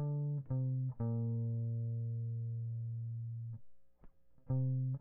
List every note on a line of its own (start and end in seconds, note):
0.00 0.44 D3
0.52 0.93 C3
1.02 3.60 A#2
4.52 4.99 C3